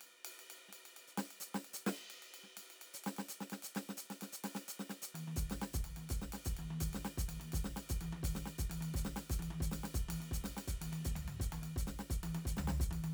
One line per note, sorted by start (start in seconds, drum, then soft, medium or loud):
0.01 ride medium
0.25 ride medium
0.39 ride medium
0.50 ride medium
0.68 snare soft
0.73 ride medium
0.85 ride medium
0.97 ride medium
1.08 hi-hat pedal soft
1.18 snare medium
1.18 ride medium
1.31 ride medium
1.40 hi-hat pedal medium
1.40 ride medium
1.55 snare medium
1.65 ride soft
1.74 hi-hat pedal medium
1.74 ride soft
1.87 snare medium
1.87 ride medium
1.95 hi-hat pedal soft
2.10 ride medium
2.22 ride soft
2.34 ride medium
2.43 snare soft
2.57 snare soft
2.57 ride medium
2.70 ride soft
2.81 ride medium
2.94 hi-hat pedal medium
3.04 snare medium
3.04 ride medium
3.17 snare medium
3.17 ride soft
3.29 hi-hat pedal medium
3.29 ride medium
3.41 snare soft
3.50 snare soft
3.50 ride medium
3.63 hi-hat pedal medium
3.63 ride medium
3.75 snare medium
3.75 ride medium
3.89 snare soft
3.97 hi-hat pedal medium
3.97 ride medium
4.10 snare soft
4.10 ride medium
4.21 snare soft
4.21 ride medium
4.33 hi-hat pedal medium
4.44 snare medium
4.44 ride medium
4.55 snare medium
4.55 ride medium
4.68 hi-hat pedal medium
4.68 ride medium
4.79 snare soft
4.90 snare soft
4.90 ride medium
5.02 hi-hat pedal medium
5.02 ride medium
5.15 high tom soft
5.15 ride medium
5.28 high tom soft
5.36 kick medium
5.36 hi-hat pedal medium
5.36 ride medium
5.50 snare medium
5.50 ride medium
5.62 snare medium
5.62 ride medium
5.73 kick medium
5.73 hi-hat pedal medium
5.84 high tom soft
5.84 ride medium
5.96 high tom soft
5.96 ride medium
6.09 kick medium
6.09 hi-hat pedal medium
6.09 ride medium
6.22 snare soft
6.32 snare soft
6.32 ride medium
6.45 kick medium
6.45 hi-hat pedal medium
6.45 ride medium
6.57 high tom soft
6.57 ride medium
6.71 high tom soft
6.80 kick medium
6.80 hi-hat pedal medium
6.80 ride medium
6.93 snare medium
6.93 ride medium
7.05 snare medium
7.05 ride medium
7.18 kick medium
7.18 hi-hat pedal medium
7.28 high tom soft
7.28 ride medium
7.40 high tom soft
7.40 ride medium
7.52 kick medium
7.52 hi-hat pedal medium
7.52 ride medium
7.64 snare medium
7.76 snare soft
7.76 ride medium
7.89 kick medium
7.89 hi-hat pedal medium
7.89 ride medium
8.01 high tom medium
8.01 ride medium
8.13 high tom medium
8.23 kick medium
8.23 hi-hat pedal medium
8.23 ride medium
8.35 snare soft
8.35 ride medium
8.46 snare soft
8.46 ride medium
8.58 kick medium
8.58 hi-hat pedal medium
8.70 high tom medium
8.70 ride medium
8.81 high tom soft
8.81 ride medium
8.94 kick medium
8.94 hi-hat pedal medium
8.94 ride soft
9.05 snare medium
9.16 snare medium
9.16 ride medium
9.30 kick medium
9.30 hi-hat pedal medium
9.30 ride medium
9.39 high tom medium
9.39 ride medium
9.51 high tom medium
9.60 kick medium
9.60 hi-hat pedal medium
9.72 snare medium
9.72 ride medium
9.84 snare soft
9.84 ride medium
9.94 kick medium
9.94 hi-hat pedal medium
10.09 high tom medium
10.09 ride medium
10.20 high tom soft
10.20 ride soft
10.31 kick medium
10.31 hi-hat pedal medium
10.44 snare medium
10.44 ride medium
10.57 snare soft
10.57 ride medium
10.68 kick medium
10.68 hi-hat pedal medium
10.81 high tom soft
10.81 ride medium
10.93 high tom soft
10.93 ride medium
11.05 kick medium
11.05 hi-hat pedal medium
11.16 floor tom medium
11.16 ride medium
11.28 floor tom soft
11.28 ride soft
11.40 kick medium
11.40 hi-hat pedal medium
11.52 high tom soft
11.52 ride medium
11.62 high tom soft
11.62 ride medium
11.76 kick medium
11.76 hi-hat pedal medium
11.87 snare soft
11.87 ride soft
11.99 snare soft
11.99 ride soft
12.10 kick medium
12.10 hi-hat pedal medium
12.23 high tom medium
12.23 ride medium
12.35 high tom medium
12.35 ride medium
12.45 kick medium
12.45 hi-hat pedal medium
12.57 snare medium
12.57 floor tom medium
12.68 snare medium
12.68 floor tom medium
12.80 kick medium
12.80 hi-hat pedal medium
12.91 high tom medium
12.91 ride medium
13.04 high tom soft
13.04 ride medium